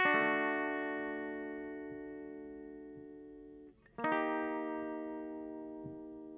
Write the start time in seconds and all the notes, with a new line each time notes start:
0.00 F#4
0.06 D4
0.15 A3
0.22 D#3
3.99 A#3
4.05 D#4
4.13 G4